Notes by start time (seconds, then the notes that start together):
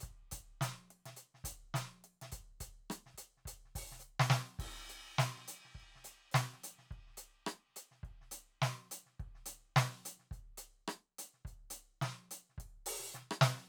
0.01 closed hi-hat, kick
0.32 closed hi-hat, kick
0.61 closed hi-hat, snare
0.91 closed hi-hat
1.06 snare, closed hi-hat
1.17 closed hi-hat
1.35 snare
1.45 closed hi-hat, kick
1.75 closed hi-hat, snare
2.04 closed hi-hat
2.22 snare, closed hi-hat
2.32 closed hi-hat, kick
2.61 closed hi-hat, kick
2.90 closed hi-hat, cross-stick
3.06 snare
3.15 closed hi-hat, kick
3.38 snare
3.46 closed hi-hat, kick
3.65 snare
3.76 open hi-hat, kick
3.92 snare
4.00 hi-hat pedal
4.20 snare
4.30 snare
4.50 snare
4.59 kick, crash
4.90 closed hi-hat
5.19 closed hi-hat, snare
5.37 snare
5.48 closed hi-hat
5.65 snare
5.75 kick
5.80 closed hi-hat
5.96 snare
6.05 open hi-hat
6.32 closed hi-hat, snare, hi-hat pedal
6.54 snare
6.64 closed hi-hat
6.79 snare
6.91 kick, closed hi-hat
7.08 snare
7.18 closed hi-hat
7.47 closed hi-hat, cross-stick
7.69 snare
7.77 closed hi-hat
7.92 snare
8.04 kick, closed hi-hat
8.22 snare
8.32 closed hi-hat
8.62 closed hi-hat, snare
8.92 closed hi-hat
9.07 snare
9.20 kick, closed hi-hat
9.35 snare
9.46 closed hi-hat, snare
9.77 closed hi-hat, snare
10.06 closed hi-hat
10.20 snare
10.32 closed hi-hat, kick
10.58 closed hi-hat
10.88 closed hi-hat, cross-stick
11.19 closed hi-hat
11.34 snare
11.45 closed hi-hat, kick
11.71 closed hi-hat
12.02 snare, closed hi-hat
12.31 closed hi-hat
12.50 snare
12.58 kick, closed hi-hat
12.86 open hi-hat
13.00 snare
13.05 snare
13.08 snare
13.14 snare, hi-hat pedal
13.31 cross-stick
13.42 snare
13.58 snare